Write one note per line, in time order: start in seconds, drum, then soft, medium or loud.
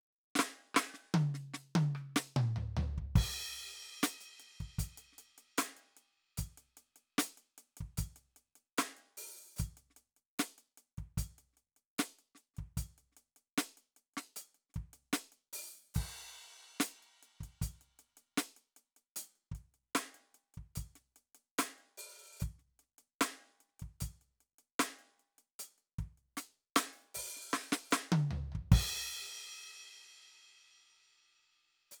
0.35 snare loud
0.39 snare loud
0.74 cross-stick medium
0.74 snare loud
0.94 snare soft
1.14 high tom loud
1.34 snare soft
1.54 snare medium
1.75 high tom loud
1.95 cross-stick medium
2.16 snare loud
2.36 mid tom loud
2.56 floor tom medium
2.77 floor tom loud
2.98 kick soft
3.15 kick loud
3.15 crash loud
4.03 closed hi-hat loud
4.03 snare loud
4.20 closed hi-hat soft
4.40 closed hi-hat soft
4.60 kick soft
4.60 closed hi-hat soft
4.78 closed hi-hat medium
4.78 kick medium
4.97 closed hi-hat medium
5.12 snare soft
5.18 closed hi-hat medium
5.38 closed hi-hat soft
5.58 closed hi-hat loud
5.58 snare loud
5.77 closed hi-hat soft
5.97 closed hi-hat soft
6.37 closed hi-hat medium
6.37 kick soft
6.57 closed hi-hat soft
6.77 closed hi-hat soft
6.96 closed hi-hat soft
7.18 closed hi-hat loud
7.18 snare loud
7.37 closed hi-hat soft
7.58 closed hi-hat soft
7.77 kick soft
7.77 closed hi-hat soft
7.97 closed hi-hat medium
7.97 kick medium
8.16 closed hi-hat soft
8.36 closed hi-hat soft
8.55 closed hi-hat soft
8.78 closed hi-hat medium
8.78 snare loud
8.96 closed hi-hat soft
9.17 open hi-hat medium
9.56 closed hi-hat medium
9.56 kick medium
9.56 hi-hat pedal medium
9.77 closed hi-hat soft
9.90 snare soft
9.96 closed hi-hat soft
10.16 closed hi-hat soft
10.39 closed hi-hat medium
10.39 snare loud
10.58 closed hi-hat soft
10.77 closed hi-hat soft
10.97 kick soft
10.97 closed hi-hat soft
11.17 closed hi-hat medium
11.17 kick medium
11.38 closed hi-hat soft
11.53 snare soft
11.57 closed hi-hat soft
11.76 closed hi-hat soft
11.98 closed hi-hat medium
11.98 snare loud
12.19 closed hi-hat soft
12.35 snare soft
12.35 closed hi-hat soft
12.54 snare soft
12.54 closed hi-hat soft
12.58 kick soft
12.77 closed hi-hat medium
12.77 kick soft
12.98 closed hi-hat soft
13.12 snare soft
13.17 closed hi-hat soft
13.36 closed hi-hat soft
13.58 closed hi-hat medium
13.58 snare loud
13.77 closed hi-hat soft
13.96 closed hi-hat soft
14.14 snare medium
14.14 closed hi-hat soft
14.36 closed hi-hat medium
14.54 closed hi-hat soft
14.69 snare soft
14.74 kick soft
14.74 closed hi-hat soft
14.93 closed hi-hat soft
15.13 closed hi-hat medium
15.13 snare loud
15.32 closed hi-hat soft
15.53 open hi-hat loud
15.94 kick medium
15.94 hi-hat pedal medium
15.94 crash medium
16.80 closed hi-hat loud
16.80 snare loud
17.02 closed hi-hat soft
17.23 closed hi-hat soft
17.39 kick soft
17.39 snare soft
17.39 closed hi-hat soft
17.61 closed hi-hat medium
17.61 kick medium
17.81 closed hi-hat soft
17.99 closed hi-hat soft
18.17 closed hi-hat soft
18.37 closed hi-hat medium
18.37 snare loud
18.56 closed hi-hat soft
18.76 closed hi-hat soft
18.96 closed hi-hat soft
19.16 closed hi-hat medium
19.35 closed hi-hat soft
19.51 kick soft
19.51 closed hi-hat soft
19.74 closed hi-hat soft
19.95 closed hi-hat medium
19.95 snare loud
20.14 closed hi-hat soft
20.34 closed hi-hat soft
20.54 kick soft
20.54 closed hi-hat soft
20.75 closed hi-hat medium
20.75 kick soft
20.95 snare soft
20.95 closed hi-hat soft
21.16 closed hi-hat soft
21.35 closed hi-hat soft
21.58 closed hi-hat medium
21.58 snare loud
21.78 closed hi-hat soft
21.97 open hi-hat medium
22.40 open hi-hat medium
22.40 kick medium
22.40 hi-hat pedal medium
22.58 snare soft
22.58 closed hi-hat soft
22.79 snare soft
22.79 closed hi-hat soft
22.98 closed hi-hat soft
23.21 closed hi-hat medium
23.21 snare loud
23.60 closed hi-hat soft
23.68 snare soft
23.79 kick soft
23.79 closed hi-hat soft
24.00 closed hi-hat medium
24.00 kick soft
24.21 closed hi-hat soft
24.40 closed hi-hat soft
24.58 closed hi-hat soft
24.79 closed hi-hat medium
24.79 snare loud
24.99 closed hi-hat soft
25.19 closed hi-hat soft
25.38 closed hi-hat soft
25.59 closed hi-hat medium
25.78 closed hi-hat soft
25.98 kick soft
25.98 snare soft
25.98 closed hi-hat soft
26.17 closed hi-hat soft
26.37 closed hi-hat medium
26.37 snare medium
26.76 closed hi-hat medium
26.76 snare loud
26.93 open hi-hat soft
27.14 open hi-hat loud
27.14 kick soft
27.36 snare soft
27.42 snare soft
27.53 snare medium
27.72 snare loud
27.91 snare loud
27.91 hi-hat pedal medium
28.12 high tom loud
28.31 floor tom medium
28.52 kick soft
28.52 floor tom soft
28.72 kick loud
28.72 crash loud
31.91 hi-hat pedal medium